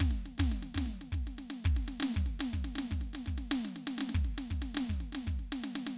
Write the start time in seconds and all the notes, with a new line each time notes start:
0.01 kick, snare
0.12 snare
0.26 snare
0.39 kick, snare
0.41 snare
0.52 snare
0.63 snare
0.75 kick, snare
0.78 snare
0.87 snare
1.02 snare
1.13 kick, snare
1.28 snare
1.39 snare
1.51 snare
1.65 kick, snare
1.77 snare
1.89 snare
2.01 snare
2.03 snare
2.15 kick, snare
2.27 snare
2.40 snare
2.54 kick, snare
2.65 snare
2.76 snare
2.79 snare
2.92 kick, snare
3.02 snare
3.14 snare
3.16 snare
3.27 kick, snare
3.39 snare
3.52 snare
3.66 snare
3.77 snare
3.88 snare
3.99 snare
4.01 snare
4.10 snare
4.15 kick
4.25 snare
4.39 snare
4.51 kick, snare
4.63 snare
4.75 snare
4.78 snare
4.90 kick, snare
5.01 snare
5.13 snare
5.16 snare
5.28 kick, snare
5.40 snare
5.53 snare
5.64 snare
5.76 snare
5.87 snare